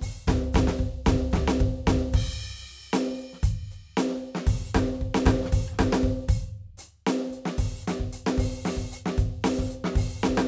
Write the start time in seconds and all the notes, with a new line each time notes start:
0.01 open hi-hat, kick, hi-hat pedal
0.27 kick, snare, floor tom, hi-hat pedal
0.53 kick, snare, floor tom, hi-hat pedal
0.67 snare
0.76 kick, hi-hat pedal
1.05 kick, snare, floor tom, hi-hat pedal
1.31 kick, snare, floor tom, hi-hat pedal
1.48 snare
1.60 kick
1.87 kick, snare, floor tom
2.10 kick, hi-hat pedal
2.14 kick, crash
2.62 hi-hat pedal
2.93 closed hi-hat, snare
3.10 kick
3.18 closed hi-hat
3.33 snare
3.43 open hi-hat, kick
3.71 hi-hat pedal
3.97 closed hi-hat, snare
4.08 snare
4.11 snare
4.14 kick, snare
4.35 snare
4.47 open hi-hat, kick
4.62 cross-stick
4.69 hi-hat pedal
4.75 kick, snare
4.93 snare
5.01 kick
5.15 snare
5.26 kick, snare
5.42 snare
5.45 snare
5.52 open hi-hat, kick
5.67 cross-stick, hi-hat pedal
5.72 snare
5.75 snare
5.79 kick, snare
5.93 snare
6.03 kick
6.25 kick
6.29 open hi-hat, kick
6.77 closed hi-hat, hi-hat pedal
7.07 closed hi-hat, snare
7.18 snare
7.22 snare
7.24 snare
7.27 kick, snare
7.33 closed hi-hat
7.46 snare
7.58 open hi-hat, kick
7.82 hi-hat pedal
7.88 closed hi-hat, snare
8.00 kick
8.13 closed hi-hat
8.27 snare
8.38 open hi-hat, kick
8.65 open hi-hat, snare
8.77 kick
8.92 open hi-hat, kick, hi-hat pedal
9.06 snare
9.18 closed hi-hat, kick
9.40 hi-hat pedal
9.44 open hi-hat, snare
9.58 kick, snare
9.63 snare
9.68 closed hi-hat, snare, hi-hat pedal
9.84 snare
9.94 open hi-hat, kick, snare
10.17 snare
10.22 snare, hi-hat pedal
10.29 kick
10.37 snare